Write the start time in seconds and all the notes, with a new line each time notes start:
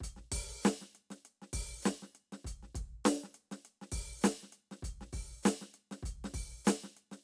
0.01 closed hi-hat, kick
0.17 snare
0.32 kick, open hi-hat
0.63 closed hi-hat, snare, hi-hat pedal
0.82 snare
0.95 closed hi-hat
1.11 snare, closed hi-hat
1.25 closed hi-hat
1.42 snare
1.53 kick, open hi-hat
1.82 closed hi-hat, snare, hi-hat pedal
2.02 snare
2.15 closed hi-hat
2.33 snare, closed hi-hat
2.45 closed hi-hat, kick
2.63 snare
2.75 kick, open hi-hat
3.05 closed hi-hat, snare, hi-hat pedal
3.24 snare
3.35 closed hi-hat
3.52 snare, closed hi-hat
3.65 closed hi-hat
3.82 snare
3.92 kick, open hi-hat
4.22 closed hi-hat, snare, hi-hat pedal
4.43 snare
4.53 closed hi-hat
4.71 snare, closed hi-hat
4.83 closed hi-hat, kick
5.01 snare
5.13 open hi-hat, kick
5.43 closed hi-hat, snare, hi-hat pedal
5.62 snare
5.74 closed hi-hat
5.92 snare, closed hi-hat
6.03 closed hi-hat, kick
6.25 snare
6.34 kick, open hi-hat
6.65 closed hi-hat, snare, hi-hat pedal
6.84 snare
6.97 closed hi-hat
7.12 snare, closed hi-hat